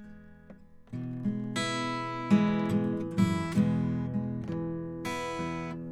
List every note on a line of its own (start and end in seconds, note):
0.00 0.14 G#3
0.06 1.46 E2
0.94 2.69 B2
0.94 1.60 E3
1.25 2.30 G#3
1.52 2.78 B3
1.56 2.75 E4
2.31 2.71 E3
2.31 2.71 G#3
2.70 2.97 B2
2.70 3.19 E3
2.70 3.07 G#3
3.18 3.47 F#2
3.18 3.57 E3
3.18 3.50 G#3
3.18 3.54 E4
3.55 5.40 E2
3.55 4.44 B2
3.55 4.50 E3
3.55 4.09 G#3
3.55 4.11 B3
4.14 5.76 G#3
4.43 5.01 B2
4.50 5.92 E3
5.05 5.76 B3
5.05 5.81 E4
5.40 5.92 E2